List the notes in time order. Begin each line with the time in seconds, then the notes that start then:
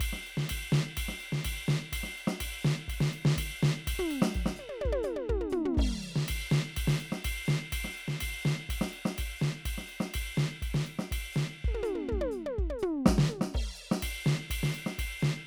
0.01 kick, ride bell
0.14 snare
0.23 hi-hat pedal
0.27 ride
0.38 snare
0.50 kick, ride bell
0.71 snare, hi-hat pedal
0.98 kick, ride bell
1.04 kick
1.09 snare
1.19 hi-hat pedal, ride
1.33 snare
1.45 kick, ride bell
1.66 snare, hi-hat pedal
1.93 kick, ride bell
1.99 kick
2.04 snare
2.14 hi-hat pedal
2.19 ride
2.28 snare
2.41 kick, ride bell
2.47 kick
2.61 hi-hat pedal
2.66 snare
2.89 kick, ride bell
2.95 kick
3.02 snare
3.10 hi-hat pedal
3.14 ride
3.26 snare
3.38 kick, ride bell
3.44 kick
3.58 hi-hat pedal
3.64 snare
3.88 kick, ride bell
3.94 kick
3.99 floor tom
4.08 hi-hat pedal, ride
4.23 snare
4.35 kick, ride bell
4.43 kick, snare
4.57 hi-hat pedal, high tom
4.82 high tom
4.86 kick
4.93 kick, high tom
5.04 hi-hat pedal, high tom
5.17 high tom
5.30 kick, mid tom
5.37 kick
5.41 mid tom
5.51 hi-hat pedal, floor tom
5.66 floor tom
5.75 kick, floor tom
5.79 crash
5.93 kick
6.03 hi-hat pedal
6.17 snare
6.26 hi-hat pedal, ride bell
6.31 kick
6.36 kick
6.51 snare, hi-hat pedal
6.77 kick, ride bell
6.89 snare
6.98 hi-hat pedal, ride
7.13 snare
7.25 kick, ride bell
7.32 kick
7.46 snare, hi-hat pedal
7.73 kick, ride bell
7.79 kick
7.85 snare
7.93 hi-hat pedal
7.98 ride
8.09 snare
8.21 kick, ride bell
8.41 hi-hat pedal
8.46 snare
8.70 kick, ride bell
8.76 kick
8.82 snare
8.89 hi-hat pedal
8.94 ride
9.06 snare
9.19 kick, ride bell
9.25 kick
9.38 hi-hat pedal
9.43 snare
9.66 kick, ride bell
9.79 snare
9.87 hi-hat pedal, ride
10.01 snare
10.15 kick, ride bell
10.22 kick
10.35 snare, hi-hat pedal
10.63 kick, ride bell
10.69 kick
10.75 snare
10.83 hi-hat pedal
10.87 ride
11.00 snare
11.12 kick, ride bell
11.19 kick
11.33 snare, hi-hat pedal
11.65 kick, mid tom
11.72 kick, mid tom
11.77 kick
11.83 hi-hat pedal, mid tom
11.96 mid tom
12.09 kick, mid tom
12.19 kick, high tom
12.32 hi-hat pedal
12.47 high tom
12.59 kick
12.67 kick, high tom
12.80 hi-hat pedal, floor tom
13.07 kick, snare
13.15 kick, snare
13.28 hi-hat pedal, mid tom
13.42 snare
13.55 kick, crash
13.63 kick
13.76 hi-hat pedal
13.92 snare
14.03 kick, ride bell
14.23 snare, hi-hat pedal
14.35 snare
14.51 kick, ride bell
14.57 kick
14.64 snare
14.73 hi-hat pedal, ride
14.87 snare
14.99 kick, ride bell
15.06 kick
15.20 snare, hi-hat pedal